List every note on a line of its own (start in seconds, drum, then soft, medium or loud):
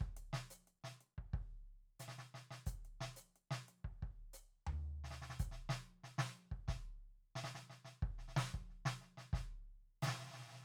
0.01 kick medium
0.17 closed hi-hat soft
0.33 snare medium
0.50 hi-hat pedal medium
0.68 closed hi-hat soft
0.84 snare soft
1.01 closed hi-hat soft
1.18 kick soft
1.34 kick medium
2.00 snare soft
2.00 hi-hat pedal medium
2.08 snare soft
2.18 snare soft
2.34 snare soft
2.51 snare soft
2.66 kick soft
2.66 hi-hat pedal medium
2.85 closed hi-hat soft
3.01 snare medium
3.16 hi-hat pedal medium
3.36 closed hi-hat soft
3.51 snare medium
3.68 closed hi-hat soft
3.85 kick soft
4.03 kick soft
4.33 hi-hat pedal medium
4.67 floor tom medium
5.04 snare soft
5.11 snare soft
5.22 snare soft
5.30 snare soft
5.40 kick medium
5.40 hi-hat pedal medium
5.52 snare soft
5.69 snare medium
6.04 snare soft
6.18 snare medium
6.35 snare soft
6.52 kick soft
6.68 kick medium
6.68 snare soft
7.36 snare medium
7.44 snare medium
7.55 snare soft
7.70 snare soft
7.85 snare soft
8.03 kick medium
8.18 snare soft
8.28 snare soft
8.37 snare medium
8.54 kick soft
8.70 snare soft
8.86 snare medium
9.01 snare soft
9.18 snare soft
9.33 kick medium
9.33 snare soft
10.02 snare medium
10.02 hi-hat pedal medium
10.07 snare medium
10.10 snare medium
10.13 snare soft
10.19 snare soft
10.22 snare soft
10.25 snare soft
10.27 snare soft
10.31 snare soft
10.34 snare soft
10.36 snare soft
10.39 snare soft
10.44 snare soft
10.47 snare soft
10.49 snare soft
10.52 snare soft
10.54 snare soft
10.59 snare soft
10.62 snare soft